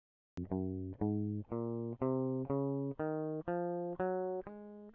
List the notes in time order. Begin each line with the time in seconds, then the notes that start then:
0.36 F2
0.54 F#2
1.04 G#2
1.54 A#2
2.04 C3
2.52 C#3
3.01 D#3
3.49 F3
4.01 F#3
4.48 G#3